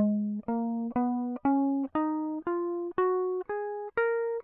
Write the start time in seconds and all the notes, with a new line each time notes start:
0.00 G#3
0.49 A#3
0.97 B3
1.46 C#4
1.96 D#4
2.47 F4
2.99 F#4
3.50 G#4
3.98 A#4